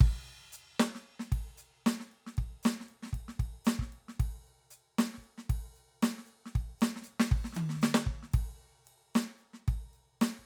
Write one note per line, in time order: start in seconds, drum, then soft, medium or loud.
0.01 kick loud
0.01 crash medium
0.53 hi-hat pedal medium
0.80 snare loud
0.80 crash soft
0.96 snare soft
1.20 snare medium
1.33 kick medium
1.33 crash medium
1.58 hi-hat pedal medium
1.87 snare loud
1.87 crash soft
2.01 snare soft
2.12 crash soft
2.27 snare soft
2.38 kick medium
2.38 crash soft
2.64 snare loud
2.64 hi-hat pedal medium
2.64 crash soft
2.81 snare soft
2.84 snare soft
2.89 crash soft
3.03 snare soft
3.07 snare soft
3.14 kick medium
3.14 crash soft
3.29 snare soft
3.40 kick medium
3.40 crash soft
3.66 snare loud
3.66 hi-hat pedal medium
3.66 crash soft
3.80 kick medium
3.80 snare soft
3.93 crash soft
4.09 snare soft
4.20 kick medium
4.20 crash medium
4.48 crash soft
4.71 hi-hat pedal medium
4.71 crash soft
4.99 snare loud
4.99 crash medium
5.15 kick soft
5.15 snare soft
5.21 hi-hat pedal soft
5.25 crash soft
5.39 snare soft
5.50 kick medium
5.50 crash medium
5.76 hi-hat pedal soft
5.76 crash soft
6.03 snare loud
6.03 crash medium
6.19 snare soft
6.26 hi-hat pedal soft
6.26 crash soft
6.47 snare soft
6.56 kick medium
6.56 crash soft
6.79 snare loud
6.79 hi-hat pedal soft
6.79 crash soft
6.97 snare medium
7.02 snare soft
7.02 hi-hat pedal medium
7.07 crash soft
7.21 snare loud
7.32 kick medium
7.32 crash soft
7.45 snare medium
7.53 snare soft
7.53 hi-hat pedal medium
7.53 high tom loud
7.70 snare medium
7.74 kick soft
7.74 snare soft
7.77 snare soft
7.82 snare loud
7.82 hi-hat pedal medium
7.95 snare loud
8.07 kick medium
8.07 snare soft
8.23 snare soft
8.32 kick medium
8.32 hi-hat pedal soft
8.32 crash medium
8.85 hi-hat pedal soft
8.85 crash soft
9.16 snare loud
9.16 crash soft
9.39 hi-hat pedal soft
9.54 snare soft
9.69 kick medium
9.69 crash soft
9.94 hi-hat pedal soft
9.94 crash soft
10.22 snare loud
10.22 crash medium
10.40 kick soft